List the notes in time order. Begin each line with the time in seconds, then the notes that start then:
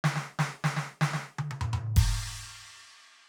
0.04 snare
0.16 snare
0.39 snare
0.64 snare
0.76 snare
1.01 snare
1.13 snare
1.38 high tom
1.51 high tom
1.61 mid tom
1.73 mid tom
1.96 kick, ride, crash